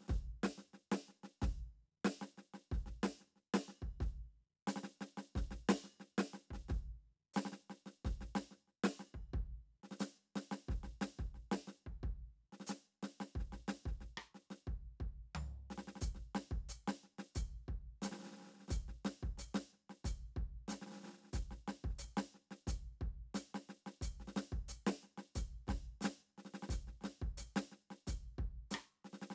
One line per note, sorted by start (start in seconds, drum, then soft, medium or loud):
0.01 snare soft
0.09 kick medium
0.09 snare soft
0.44 snare medium
0.58 snare soft
0.74 snare soft
0.92 snare medium
1.09 snare soft
1.24 snare soft
1.42 kick medium
1.42 snare soft
2.05 snare medium
2.22 snare soft
2.38 snare soft
2.54 snare soft
2.72 kick medium
2.72 snare soft
2.87 snare soft
3.04 snare medium
3.21 snare soft
3.36 snare soft
3.54 snare medium
3.69 snare soft
3.82 kick soft
4.01 kick medium
4.01 snare soft
4.68 snare medium
4.68 hi-hat pedal medium
4.76 snare soft
4.84 snare soft
5.01 snare soft
5.18 snare soft
5.36 kick medium
5.36 snare soft
5.51 snare soft
5.69 snare loud
5.84 snare soft
6.00 snare soft
6.18 snare medium
6.34 snare soft
6.51 kick soft
6.51 snare soft
6.69 kick medium
6.69 snare soft
7.34 snare medium
7.34 hi-hat pedal soft
7.46 snare soft
7.53 snare soft
7.70 snare soft
7.86 snare soft
8.05 kick medium
8.05 snare soft
8.21 snare soft
8.36 snare medium
8.51 snare soft
8.68 snare soft
8.84 snare medium
9.00 snare soft
9.15 kick soft
9.34 kick medium
9.84 snare soft
9.92 snare soft
10.00 snare medium
10.00 hi-hat pedal medium
10.36 snare medium
10.52 snare medium
10.69 kick medium
10.69 snare soft
10.84 snare soft
11.02 snare medium
11.19 kick soft
11.19 snare soft
11.35 snare soft
11.52 snare medium
11.68 snare soft
11.87 kick soft
12.04 kick medium
12.53 snare soft
12.60 snare soft
12.67 snare medium
12.67 hi-hat pedal medium
13.03 snare medium
13.21 snare soft
13.36 kick medium
13.40 snare soft
13.53 snare soft
13.68 snare medium
13.86 kick medium
13.86 snare soft
14.01 snare soft
14.18 cross-stick medium
14.35 snare soft
14.51 snare soft
14.68 kick soft
15.01 kick soft
15.35 floor tom medium
15.71 snare soft
15.78 snare soft
15.88 snare soft
15.96 snare soft
16.02 kick medium
16.02 hi-hat pedal medium
16.15 snare soft
16.35 snare medium
16.52 kick medium
16.69 hi-hat pedal medium
16.88 snare medium
17.04 snare soft
17.19 snare soft
17.36 kick medium
17.36 hi-hat pedal medium
17.69 kick soft
18.02 snare soft
18.02 hi-hat pedal medium
18.05 snare soft
18.12 snare soft
18.14 snare soft
18.19 snare soft
18.23 snare soft
18.23 hi-hat pedal soft
18.26 snare soft
18.28 snare soft
18.31 snare soft
18.33 snare soft
18.37 snare soft
18.40 snare soft
18.43 snare soft
18.45 snare soft
18.50 snare soft
18.54 snare soft
18.57 snare soft
18.62 snare soft
18.68 kick medium
18.68 snare soft
18.68 hi-hat pedal medium
18.89 snare soft
19.05 snare medium
19.23 kick medium
19.23 snare soft
19.38 snare soft
19.38 hi-hat pedal medium
19.55 snare medium
19.73 snare soft
19.90 snare soft
20.05 kick medium
20.05 snare soft
20.05 hi-hat pedal medium
20.37 kick medium
20.68 snare soft
20.68 hi-hat pedal medium
20.72 snare soft
20.87 snare soft
20.90 snare soft
20.92 snare soft
20.95 snare soft
20.97 snare soft
21.00 snare soft
21.04 snare soft
21.06 snare soft
21.08 snare soft
21.10 snare soft
21.14 snare soft
21.18 snare soft
21.21 snare soft
21.24 snare soft
21.27 snare soft
21.33 kick medium
21.33 snare soft
21.33 hi-hat pedal medium
21.51 snare soft
21.68 snare medium
21.84 kick medium
21.90 snare soft
21.99 hi-hat pedal medium
22.03 snare soft
22.18 snare medium
22.35 snare soft
22.51 snare soft
22.68 kick medium
22.68 snare soft
22.68 hi-hat pedal medium
23.02 kick medium
23.35 snare medium
23.35 hi-hat pedal medium
23.55 snare soft
23.69 snare soft
23.87 snare soft
24.02 kick soft
24.02 hi-hat pedal medium
24.20 snare soft
24.28 snare soft
24.37 snare medium
24.53 kick medium
24.69 snare soft
24.69 hi-hat pedal medium
24.87 snare medium
25.03 snare soft
25.18 snare soft
25.36 kick medium
25.36 snare soft
25.36 hi-hat pedal medium
25.68 kick medium
25.68 snare soft
25.69 snare medium
26.01 snare soft
26.01 hi-hat pedal medium
26.05 snare medium
26.38 snare soft
26.45 snare soft
26.54 snare soft
26.63 snare soft
26.69 kick medium
26.69 snare soft
26.69 hi-hat pedal medium
26.88 snare soft
27.02 snare soft
27.04 snare medium
27.22 kick medium
27.38 snare soft
27.38 hi-hat pedal medium
27.57 snare medium
27.72 snare soft
27.91 snare soft
28.07 kick soft
28.07 snare soft
28.07 hi-hat pedal medium
28.39 kick medium
28.71 cross-stick medium
28.71 snare soft
28.71 hi-hat pedal medium
29.05 snare soft
29.13 snare soft
29.22 snare soft
29.31 snare soft